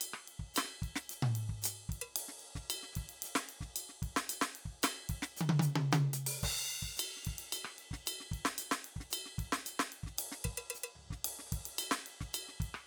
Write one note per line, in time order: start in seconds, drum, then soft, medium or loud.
0.01 hi-hat pedal medium
0.01 ride bell loud
0.14 cross-stick medium
0.28 ride soft
0.39 kick soft
0.54 snare medium
0.54 hi-hat pedal medium
0.54 ride bell loud
0.65 snare soft
0.82 kick soft
0.82 ride soft
0.88 kick soft
0.96 snare medium
1.09 hi-hat pedal medium
1.09 ride medium
1.22 mid tom loud
1.35 ride medium
1.49 kick soft
1.62 closed hi-hat loud
1.62 hi-hat pedal medium
1.62 ride bell loud
1.89 kick soft
1.89 ride medium
1.95 kick soft
2.01 percussion loud
2.16 hi-hat pedal medium
2.16 ride loud
2.28 snare soft
2.40 ride soft
2.55 kick soft
2.55 snare soft
2.70 hi-hat pedal medium
2.70 ride bell loud
2.83 snare soft
2.93 kick soft
2.93 cross-stick soft
2.93 ride medium
3.03 kick soft
3.09 snare soft
3.09 ride medium
3.14 snare soft
3.22 hi-hat pedal medium
3.22 ride medium
3.35 snare loud
3.49 ride medium
3.61 kick soft
3.61 snare soft
3.66 kick soft
3.76 hi-hat pedal medium
3.76 ride bell loud
3.89 snare soft
4.02 kick soft
4.02 ride soft
4.08 kick soft
4.16 snare loud
4.29 hi-hat pedal medium
4.29 ride bell loud
4.42 snare loud
4.55 ride medium
4.66 kick soft
4.82 snare loud
4.82 hi-hat pedal medium
4.82 ride bell loud
5.09 kick soft
5.09 ride medium
5.22 snare medium
5.37 hi-hat pedal loud
5.41 high tom medium
5.49 high tom loud
5.59 hi-hat pedal loud
5.59 high tom loud
5.76 high tom loud
5.92 hi-hat pedal medium
5.92 high tom loud
6.13 closed hi-hat loud
6.27 closed hi-hat loud
6.43 kick soft
6.43 hi-hat pedal medium
6.43 crash loud
6.82 kick soft
6.87 kick soft
6.97 hi-hat pedal medium
6.97 ride bell loud
7.17 snare soft
7.23 snare soft
7.23 ride medium
7.27 kick soft
7.27 snare soft
7.37 snare soft
7.37 ride medium
7.52 hi-hat pedal medium
7.52 ride bell loud
7.65 cross-stick medium
7.78 ride soft
7.91 kick soft
7.91 snare medium
8.06 hi-hat pedal medium
8.06 ride bell loud
8.20 snare soft
8.31 kick soft
8.31 ride soft
8.38 kick soft
8.45 snare loud
8.58 hi-hat pedal medium
8.58 ride bell medium
8.71 snare medium
8.84 ride medium
8.96 kick soft
9.00 snare soft
9.11 hi-hat pedal medium
9.11 ride bell loud
9.26 snare soft
9.38 kick soft
9.38 ride medium
9.45 kick soft
9.52 snare medium
9.58 snare soft
9.66 hi-hat pedal medium
9.66 ride bell medium
9.79 snare loud
9.92 ride medium
10.03 kick soft
10.03 snare soft
10.08 kick soft
10.18 hi-hat pedal medium
10.18 ride loud
10.32 snare medium
10.44 kick soft
10.44 percussion loud
10.51 kick soft
10.57 percussion loud
10.70 percussion loud
10.74 hi-hat pedal medium
10.84 percussion loud
10.95 floor tom soft
11.10 kick soft
11.10 snare soft
11.25 hi-hat pedal medium
11.25 ride loud
11.39 snare soft
11.47 cross-stick soft
11.52 kick soft
11.52 ride medium
11.59 kick soft
11.66 snare soft
11.66 ride medium
11.70 snare soft
11.78 hi-hat pedal medium
11.78 ride bell loud
11.91 snare loud
11.98 snare soft
12.06 ride medium
12.21 kick soft
12.21 snare soft
12.33 hi-hat pedal medium
12.33 ride bell loud
12.48 snare soft
12.60 kick medium
12.60 ride medium
12.67 kick soft
12.74 cross-stick medium